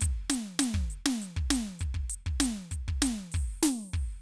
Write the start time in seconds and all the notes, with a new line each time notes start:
0.01 closed hi-hat, kick
0.30 closed hi-hat, snare
0.59 closed hi-hat, snare
0.74 kick
0.90 closed hi-hat
1.06 snare
1.22 closed hi-hat
1.37 kick
1.51 closed hi-hat, snare
1.79 closed hi-hat, kick
1.95 kick
2.10 closed hi-hat
2.26 kick
2.40 closed hi-hat, snare
2.71 closed hi-hat, kick
2.88 kick
3.02 closed hi-hat, snare
3.32 open hi-hat, kick
3.63 open hi-hat, snare
3.94 kick